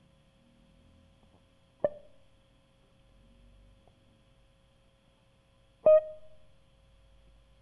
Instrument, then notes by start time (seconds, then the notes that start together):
electric guitar
1.85 D5
5.87 D#5